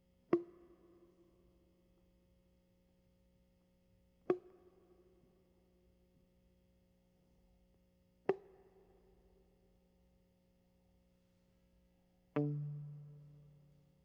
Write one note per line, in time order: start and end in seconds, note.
0.34 0.41 F4
4.31 4.38 F#4
12.38 13.84 D3